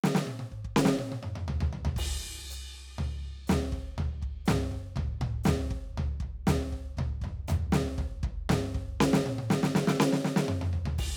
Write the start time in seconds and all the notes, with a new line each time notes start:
0.03 snare
0.15 snare
0.26 hi-hat pedal, high tom
0.39 high tom
0.52 kick
0.64 kick
0.76 snare
0.85 snare
0.99 high tom
1.12 high tom
1.23 mid tom
1.36 mid tom
1.48 floor tom
1.61 floor tom
1.73 floor tom
1.85 floor tom
1.96 kick, crash
2.50 hi-hat pedal
2.98 floor tom
3.47 snare, floor tom, hi-hat pedal
3.72 kick, floor tom
3.98 floor tom
4.22 kick, floor tom
4.46 snare, hi-hat pedal, floor tom
4.71 kick, floor tom
4.96 kick, floor tom, high tom
5.21 kick, floor tom, high tom
5.44 snare, floor tom, hi-hat pedal
5.70 kick, floor tom
5.97 floor tom
6.20 kick, floor tom
6.47 snare, floor tom, hi-hat pedal
6.72 kick, floor tom
6.97 kick, floor tom, high tom
7.21 kick, floor tom, mid tom
7.48 floor tom, hi-hat pedal, mid tom
7.72 snare, floor tom
7.98 kick, floor tom
8.23 kick, floor tom
8.49 snare, floor tom
8.74 kick, floor tom
9.00 snare
9.13 snare
9.26 high tom
9.38 high tom
9.50 snare
9.63 snare
9.68 hi-hat pedal
9.75 snare
9.87 snare
10.00 snare
10.13 snare
10.24 snare
10.36 snare
10.48 mid tom
10.61 mid tom
10.73 floor tom
10.86 floor tom
10.98 kick, crash